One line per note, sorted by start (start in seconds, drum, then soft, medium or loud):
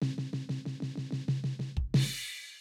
0.02 snare medium
0.02 high tom medium
0.18 snare medium
0.18 high tom medium
0.33 snare medium
0.33 high tom medium
0.49 snare medium
0.49 high tom medium
0.65 snare medium
0.65 high tom medium
0.80 snare medium
0.80 high tom medium
0.96 snare medium
0.96 high tom medium
1.11 snare medium
1.11 high tom medium
1.28 snare medium
1.28 floor tom medium
1.44 snare medium
1.44 floor tom medium
1.59 snare medium
1.59 floor tom medium
1.77 kick medium
1.94 snare loud
1.94 crash loud